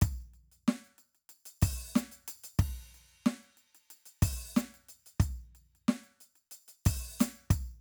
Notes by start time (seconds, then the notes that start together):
0.01 kick, percussion
0.21 percussion
0.34 percussion
0.52 percussion
0.68 snare
0.84 percussion
0.98 percussion
1.15 percussion
1.29 percussion
1.46 percussion
1.62 kick, percussion
1.96 snare, percussion
2.12 percussion
2.28 percussion
2.44 percussion
2.59 kick, crash
2.94 percussion
3.09 percussion
3.26 snare
3.43 percussion
3.57 percussion
3.75 percussion
3.90 percussion
4.06 percussion
4.22 kick, percussion
4.57 snare, percussion
4.74 percussion
4.89 percussion
5.06 percussion
5.20 kick, percussion
5.55 percussion
5.75 percussion
5.88 snare
6.04 percussion
6.21 percussion
6.36 percussion
6.51 percussion
6.68 percussion
6.86 kick, percussion
7.20 snare, percussion
7.50 kick, percussion